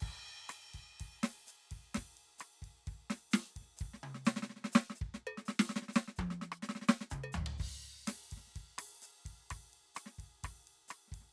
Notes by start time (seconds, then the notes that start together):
0.01 kick, ride
0.08 kick
0.15 cross-stick
0.49 cross-stick, hi-hat pedal, ride
0.74 kick, ride
0.80 kick
1.00 kick, ride
1.24 snare, ride
1.47 hi-hat pedal, ride
1.72 kick, ride
1.77 kick
1.95 kick, snare, hi-hat pedal, ride
2.03 kick
2.18 ride
2.39 cross-stick, hi-hat pedal, ride
2.63 kick, ride
2.68 kick
2.86 kick, hi-hat pedal, ride
2.93 kick
3.10 snare, ride
3.32 snare, hi-hat pedal, ride
3.57 kick, ride
3.62 kick, snare
3.66 snare
3.77 hi-hat pedal, ride
3.81 kick
3.94 snare
4.04 mid tom
4.15 snare
4.26 snare, hi-hat pedal
4.37 snare
4.43 snare
4.50 snare
4.57 snare
4.61 snare
4.65 snare
4.73 snare, hi-hat pedal
4.90 snare
4.96 hi-hat pedal
5.02 kick
5.10 kick
5.15 snare
5.27 percussion
5.38 snare
5.46 snare, hi-hat pedal
5.60 snare
5.69 snare, hi-hat pedal
5.76 snare
5.82 snare
5.89 snare, hi-hat pedal
5.96 snare
6.08 snare
6.17 kick, hi-hat pedal, high tom
6.25 kick
6.31 snare
6.42 snare
6.52 cross-stick
6.63 snare, hi-hat pedal
6.69 snare
6.76 snare
6.82 snare
6.88 snare, hi-hat pedal
7.01 snare
7.11 kick, hi-hat pedal, mid tom
7.18 kick
7.24 percussion
7.33 floor tom, hi-hat pedal
7.38 kick
7.47 floor tom
7.57 kick, hi-hat pedal, crash, floor tom
7.67 kick
8.07 snare, hi-hat pedal, ride
8.32 kick, ride
8.37 kick, snare
8.55 kick, hi-hat pedal, ride
8.79 cross-stick, ride
9.02 hi-hat pedal, ride
9.26 kick, ride
9.31 kick
9.51 kick, cross-stick, hi-hat pedal, ride
9.57 kick
9.74 ride
9.95 cross-stick, hi-hat pedal, ride
10.06 snare
10.19 kick, ride
10.24 kick
10.43 kick, cross-stick, hi-hat pedal, ride
10.50 kick
10.68 ride
10.89 cross-stick, hi-hat pedal, ride
11.08 snare
11.12 kick, ride
11.18 kick, snare